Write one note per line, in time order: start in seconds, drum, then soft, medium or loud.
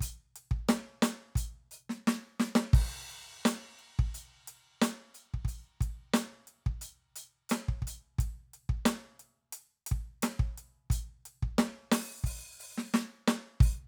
0.01 closed hi-hat loud
0.01 kick medium
0.36 closed hi-hat medium
0.51 kick medium
0.69 closed hi-hat medium
0.69 snare loud
1.03 closed hi-hat loud
1.03 snare loud
1.36 closed hi-hat loud
1.36 kick medium
1.71 open hi-hat medium
1.90 snare medium
2.08 snare loud
2.40 snare loud
2.56 snare loud
2.74 kick loud
2.74 crash medium
3.10 closed hi-hat soft
3.46 closed hi-hat loud
3.46 snare loud
3.79 closed hi-hat soft
3.99 kick medium
3.99 snare soft
4.15 closed hi-hat medium
4.48 closed hi-hat medium
4.82 closed hi-hat loud
4.82 snare loud
5.15 closed hi-hat medium
5.34 kick medium
5.45 open hi-hat medium
5.45 kick medium
5.81 kick medium
5.81 closed hi-hat medium
6.14 closed hi-hat loud
6.14 snare loud
6.48 closed hi-hat medium
6.67 kick medium
6.82 closed hi-hat loud
7.16 closed hi-hat loud
7.50 closed hi-hat loud
7.50 snare loud
7.69 kick medium
7.82 kick medium
7.87 closed hi-hat loud
8.19 kick medium
8.19 closed hi-hat medium
8.54 closed hi-hat medium
8.70 kick medium
8.86 snare loud
8.86 closed hi-hat loud
9.20 closed hi-hat medium
9.53 closed hi-hat loud
9.87 closed hi-hat loud
9.92 kick medium
10.23 snare loud
10.23 closed hi-hat loud
10.40 kick medium
10.58 closed hi-hat medium
10.90 closed hi-hat loud
10.90 kick medium
11.26 closed hi-hat medium
11.43 kick medium
11.59 snare loud
11.59 closed hi-hat medium
11.92 snare loud
11.92 open hi-hat loud
12.24 open hi-hat loud
12.24 kick medium
12.60 open hi-hat loud
12.78 snare medium
12.94 snare loud
13.28 snare loud
13.61 open hi-hat loud
13.61 kick loud